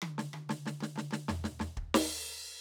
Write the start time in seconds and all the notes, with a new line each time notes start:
0.02 cross-stick, high tom
0.18 snare, high tom
0.33 cross-stick, high tom
0.49 snare, high tom
0.66 snare, high tom
0.80 snare, high tom
0.96 snare, high tom
1.11 snare, high tom
1.28 snare, floor tom
1.44 snare, floor tom
1.59 snare, floor tom
1.77 kick
1.94 snare, crash